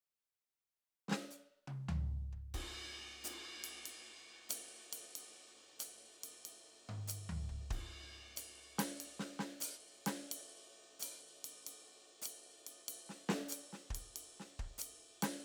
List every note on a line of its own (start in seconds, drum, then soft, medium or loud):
1.08 snare soft
1.11 snare medium
1.30 hi-hat pedal medium
1.67 high tom medium
1.88 floor tom loud
2.32 kick soft
2.54 kick soft
2.54 crash soft
2.54 ride medium
3.24 hi-hat pedal loud
3.24 ride medium
3.64 ride medium
3.85 ride medium
4.49 hi-hat pedal loud
4.49 ride loud
4.92 ride loud
5.15 ride medium
5.79 hi-hat pedal loud
5.79 ride medium
6.23 ride medium
6.45 ride medium
6.89 mid tom medium
7.07 hi-hat pedal loud
7.07 ride medium
7.29 floor tom medium
7.49 kick soft
7.70 kick medium
7.70 ride medium
8.36 hi-hat pedal medium
8.36 ride medium
8.78 snare medium
8.78 ride loud
9.00 ride medium
9.19 snare medium
9.39 snare medium
9.60 hi-hat pedal loud
9.60 ride loud
10.06 snare medium
10.06 ride medium
10.31 ride loud
10.99 hi-hat pedal medium
10.99 ride loud
11.44 ride medium
11.66 ride medium
12.22 hi-hat pedal loud
12.22 ride medium
12.66 ride medium
12.88 ride loud
13.09 snare soft
13.29 snare medium
13.48 hi-hat pedal loud
13.48 ride medium
13.72 snare soft
13.90 kick soft
13.94 ride medium
14.16 ride medium
14.39 snare soft
14.59 kick soft
14.78 hi-hat pedal loud
14.78 ride medium
15.22 snare medium
15.22 ride loud